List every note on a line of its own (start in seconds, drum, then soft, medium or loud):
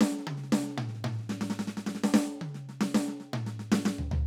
0.00 snare loud
0.11 snare soft
0.18 snare soft
0.27 high tom loud
0.37 snare soft
0.43 snare soft
0.52 snare loud
0.62 snare soft
0.69 snare soft
0.78 mid tom loud
0.89 snare soft
0.95 snare soft
1.04 mid tom loud
1.12 snare soft
1.18 snare soft
1.23 snare soft
1.29 snare medium
1.41 snare medium
1.50 snare medium
1.59 snare medium
1.67 snare medium
1.77 snare medium
1.86 snare medium
1.95 snare medium
2.03 snare loud
2.14 snare loud
2.41 closed hi-hat soft
2.41 high tom loud
2.54 snare soft
2.69 snare soft
2.81 snare loud
2.94 snare loud
3.08 snare soft
3.20 snare soft
3.33 mid tom loud
3.46 snare medium
3.59 snare soft
3.72 snare loud
3.85 snare loud
3.98 floor tom medium
4.11 floor tom loud